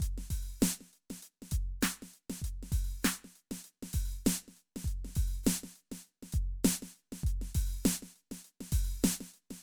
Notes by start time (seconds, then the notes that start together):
0.01 closed hi-hat, kick
0.18 snare
0.31 open hi-hat, kick
0.60 closed hi-hat, snare, hi-hat pedal
0.81 snare
0.94 closed hi-hat
1.10 snare, closed hi-hat
1.23 closed hi-hat
1.43 snare
1.52 closed hi-hat, kick, snare
1.81 closed hi-hat, snare, hi-hat pedal
2.03 snare
2.14 closed hi-hat
2.30 snare, closed hi-hat
2.42 closed hi-hat, kick
2.63 snare
2.73 open hi-hat, kick
3.03 closed hi-hat, snare, hi-hat pedal
3.25 snare
3.36 closed hi-hat
3.52 snare, closed hi-hat
3.65 closed hi-hat
3.83 snare
3.94 open hi-hat, kick
4.25 closed hi-hat, snare, hi-hat pedal
4.48 snare
4.57 closed hi-hat
4.76 snare, closed hi-hat
4.85 closed hi-hat, kick
5.05 snare
5.10 snare
5.16 open hi-hat, kick
5.44 snare, hi-hat pedal
5.48 closed hi-hat
5.64 snare
5.76 closed hi-hat
5.92 snare, closed hi-hat
6.05 closed hi-hat
6.23 snare
6.33 open hi-hat, kick
6.64 closed hi-hat, snare, hi-hat pedal
6.83 snare
6.96 closed hi-hat
7.13 snare
7.24 closed hi-hat, kick
7.42 snare
7.55 open hi-hat, kick
7.84 closed hi-hat, snare, hi-hat pedal
8.03 snare
8.16 closed hi-hat
8.32 snare, closed hi-hat
8.45 closed hi-hat
8.61 snare
8.73 open hi-hat, kick
9.03 closed hi-hat, snare, hi-hat pedal
9.21 snare
9.34 closed hi-hat
9.51 snare, closed hi-hat